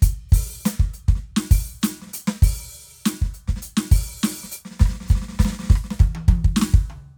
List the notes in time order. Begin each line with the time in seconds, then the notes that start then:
0.01 closed hi-hat, kick, snare
0.29 kick, hi-hat pedal
0.34 open hi-hat
0.65 closed hi-hat, snare, hi-hat pedal
0.80 kick, snare
0.94 closed hi-hat
1.08 kick, snare
1.16 snare
1.36 snare
1.51 open hi-hat, kick
1.81 closed hi-hat, snare, hi-hat pedal
2.02 snare
2.07 snare
2.11 closed hi-hat, snare
2.27 snare
2.42 open hi-hat, kick
2.74 open hi-hat
3.06 open hi-hat, snare, hi-hat pedal
3.22 kick, snare
3.34 closed hi-hat
3.48 kick, snare
3.56 snare
3.62 closed hi-hat
3.77 snare
3.92 open hi-hat, kick
4.23 open hi-hat, snare
4.44 kick, snare
4.51 open hi-hat, hi-hat pedal
4.65 snare
4.71 snare
4.74 snare
4.78 snare, hi-hat pedal
4.80 kick, snare
4.86 cross-stick, snare
4.93 snare
5.00 snare
5.04 snare
5.08 kick, snare, hi-hat pedal
5.10 snare
5.16 snare
5.19 snare
5.22 snare
5.29 snare
5.33 snare
5.36 snare
5.39 kick, snare, hi-hat pedal
5.45 snare
5.48 snare
5.52 snare
5.59 snare
5.63 snare
5.67 snare
5.70 kick, snare, hi-hat pedal
5.76 cross-stick
5.84 snare
5.91 snare
5.99 kick, hi-hat pedal, high tom
6.15 high tom
6.28 kick, high tom
6.45 kick
6.56 snare, hi-hat pedal
6.62 snare
6.74 kick
6.90 mid tom